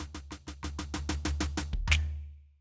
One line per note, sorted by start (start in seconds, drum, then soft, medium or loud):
0.00 snare soft
0.00 floor tom medium
0.15 snare soft
0.15 floor tom soft
0.31 snare soft
0.31 floor tom medium
0.47 snare soft
0.47 floor tom soft
0.63 snare medium
0.63 floor tom medium
0.79 snare medium
0.79 floor tom medium
0.94 snare medium
0.94 floor tom medium
1.09 snare medium
1.09 floor tom medium
1.25 snare medium
1.25 floor tom medium
1.40 snare medium
1.40 floor tom medium
1.57 snare medium
1.57 floor tom medium
1.57 hi-hat pedal medium
1.73 kick medium
1.88 snare loud
1.88 floor tom loud